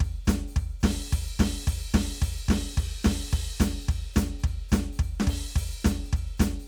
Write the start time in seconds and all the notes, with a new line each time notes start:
0.01 open hi-hat, kick
0.26 closed hi-hat, kick, snare, hi-hat pedal
0.48 open hi-hat
0.57 open hi-hat, kick
0.81 kick, snare, hi-hat pedal, crash
1.13 open hi-hat, kick
1.39 kick, snare, hi-hat pedal, crash
1.68 open hi-hat, kick
1.93 kick, snare, hi-hat pedal, crash
2.22 open hi-hat, kick
2.46 kick, hi-hat pedal
2.51 snare, crash
2.78 kick, crash
3.04 kick, snare, hi-hat pedal, crash
3.33 kick, crash
3.59 closed hi-hat, kick, snare, hi-hat pedal
3.81 open hi-hat
3.89 open hi-hat, kick
4.14 closed hi-hat, kick, snare, hi-hat pedal
4.39 open hi-hat
4.44 open hi-hat, kick
4.70 closed hi-hat, kick, snare, hi-hat pedal
4.93 open hi-hat
5.00 open hi-hat, kick
5.20 snare, hi-hat pedal
5.28 kick, crash
5.56 open hi-hat, kick
5.82 kick, snare, hi-hat pedal
5.86 closed hi-hat
6.05 open hi-hat
6.13 open hi-hat, kick
6.38 closed hi-hat, kick, snare, hi-hat pedal
6.60 open hi-hat